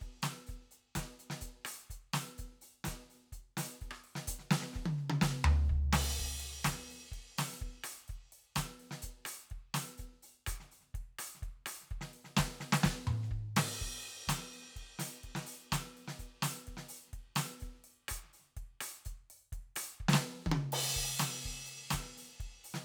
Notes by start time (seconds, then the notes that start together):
0.01 closed hi-hat, kick
0.22 closed hi-hat, snare
0.47 open hi-hat, kick, snare
0.52 snare
0.71 open hi-hat
0.95 closed hi-hat, kick, snare
1.19 open hi-hat
1.30 snare
1.41 closed hi-hat, kick
1.65 open hi-hat, cross-stick
1.90 closed hi-hat, kick
2.13 open hi-hat, snare
2.38 closed hi-hat, kick, snare
2.45 snare
2.61 open hi-hat
2.84 open hi-hat, kick, snare
3.00 snare
3.10 open hi-hat, snare
3.16 snare
3.18 snare
3.32 closed hi-hat, kick
3.57 open hi-hat, snare
3.81 kick, open hi-hat
3.91 cross-stick
4.04 open hi-hat
4.15 snare
4.28 closed hi-hat, kick
4.39 snare
4.51 snare
4.62 snare
4.73 kick, snare
4.86 high tom
4.98 snare
5.10 high tom
5.22 kick, snare
5.44 floor tom
5.66 kick, hi-hat pedal
5.75 kick
5.93 snare, crash
6.08 snare
6.19 kick
6.40 open hi-hat
6.64 open hi-hat, kick, snare
6.78 snare
6.90 open hi-hat, snare
6.96 snare
7.00 snare
7.08 kick, snare
7.13 closed hi-hat
7.38 open hi-hat, snare
7.53 snare
7.61 kick, closed hi-hat
7.84 open hi-hat, cross-stick
8.08 kick, open hi-hat
8.32 open hi-hat
8.56 open hi-hat, kick, snare
8.80 open hi-hat
8.91 snare
9.02 closed hi-hat, kick
9.25 open hi-hat, cross-stick
9.50 kick, closed hi-hat
9.74 open hi-hat, snare
9.98 open hi-hat, kick
10.23 open hi-hat
10.47 open hi-hat, kick, cross-stick
10.60 snare
10.71 open hi-hat
10.81 snare
10.85 snare
10.89 snare
10.94 kick, closed hi-hat
11.19 open hi-hat, cross-stick
11.35 snare
11.42 kick, closed hi-hat
11.66 open hi-hat, cross-stick
11.81 snare
11.91 kick, closed hi-hat
12.01 snare
12.13 open hi-hat
12.25 snare
12.37 kick, snare
12.50 snare
12.60 snare
12.73 snare
12.84 kick, snare
12.99 snare
13.07 mid tom
13.23 snare
13.31 kick
13.56 snare, crash
13.81 kick
13.90 snare
14.02 open hi-hat
14.28 closed hi-hat, kick, snare
14.38 snare
14.53 open hi-hat
14.63 snare
14.76 kick, closed hi-hat
14.99 open hi-hat, snare
15.24 kick, closed hi-hat
15.35 snare
15.46 open hi-hat
15.72 open hi-hat, kick, snare
15.97 open hi-hat
16.08 snare
16.19 open hi-hat, kick
16.42 open hi-hat, snare
16.54 snare
16.67 kick, closed hi-hat
16.77 snare
16.89 open hi-hat
17.07 snare
17.13 kick, closed hi-hat
17.36 open hi-hat, snare
17.46 snare
17.60 open hi-hat, kick
17.66 snare
17.74 snare
17.81 snare, open hi-hat
18.08 open hi-hat, kick, cross-stick
18.24 snare
18.33 open hi-hat
18.40 snare
18.44 snare
18.57 kick, closed hi-hat
18.81 open hi-hat, cross-stick
19.05 closed hi-hat, kick
19.30 open hi-hat
19.52 kick, closed hi-hat
19.76 open hi-hat, cross-stick
20.00 kick
20.09 snare
20.12 snare
20.46 kick, high tom
20.52 high tom
20.70 high tom, crash
20.91 snare
20.96 kick
21.19 open hi-hat, snare
21.42 kick, open hi-hat
21.50 snare
21.53 snare
21.66 open hi-hat
21.90 open hi-hat, kick, snare
22.02 snare
22.14 open hi-hat, snare
22.21 snare
22.24 snare
22.40 kick, closed hi-hat
22.64 open hi-hat
22.74 snare